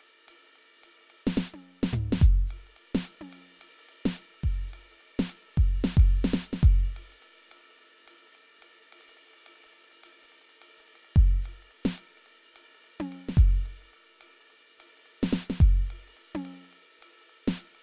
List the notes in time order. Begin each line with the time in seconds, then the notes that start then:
0.27 hi-hat pedal, ride
0.47 ride
0.56 ride
0.81 hi-hat pedal, ride
1.01 ride
1.10 ride
1.27 snare, hi-hat pedal
1.37 snare
1.54 high tom
1.83 snare, hi-hat pedal
1.91 kick, floor tom
2.04 hi-hat pedal
2.12 snare
2.21 kick, crash
2.46 hi-hat pedal
2.51 ride
2.67 ride
2.76 ride
2.95 snare, hi-hat pedal
3.05 ride
3.21 high tom
3.33 ride
3.56 hi-hat pedal
3.61 ride
3.79 ride
3.89 ride
4.05 snare, hi-hat pedal
4.16 ride
4.34 ride
4.43 kick, ride
4.68 hi-hat pedal
4.73 ride
4.92 ride
5.01 ride
5.19 snare, hi-hat pedal
5.29 ride
5.49 ride
5.57 kick, ride
5.79 hi-hat pedal
5.84 snare, ride
5.97 kick, ride
6.24 snare, hi-hat pedal
6.33 snare
6.53 snare
6.63 kick, ride
6.92 hi-hat pedal
6.96 ride
7.12 ride
7.48 hi-hat pedal, ride
7.71 ride
7.79 ride
8.04 hi-hat pedal, ride
8.27 ride
8.35 ride
8.58 hi-hat pedal, ride
8.92 ride
9.01 ride
9.06 hi-hat pedal, ride
9.17 ride
9.27 ride
9.33 ride
9.46 ride
9.56 ride
9.63 hi-hat pedal, ride
9.73 ride
9.84 ride
9.91 ride
10.04 ride
10.12 ride
10.22 hi-hat pedal, ride
10.32 ride
10.41 ride
10.49 ride
10.62 ride
10.77 hi-hat pedal, ride
10.88 ride
10.95 ride
11.05 ride
11.16 kick
11.41 hi-hat pedal
11.46 ride
11.62 ride
11.71 ride
11.85 snare
11.90 hi-hat pedal
11.98 ride
12.17 ride
12.26 ride
12.53 hi-hat pedal, ride
12.75 ride
12.84 ride
13.00 hi-hat pedal, high tom
13.12 ride
13.29 snare
13.37 kick, ride
13.62 hi-hat pedal, ride
13.82 ride
13.93 ride
14.19 hi-hat pedal, ride
14.41 ride
14.50 ride
14.77 hi-hat pedal, ride
14.97 ride
15.06 ride
15.23 snare, hi-hat pedal
15.33 snare
15.50 snare
15.60 kick, ride
15.84 hi-hat pedal
15.90 ride
16.08 ride
16.17 ride
16.34 hi-hat pedal, high tom
16.45 ride
16.65 ride
16.73 ride
16.98 hi-hat pedal
17.03 ride
17.22 ride
17.29 ride
17.48 snare, hi-hat pedal
17.58 ride
17.75 ride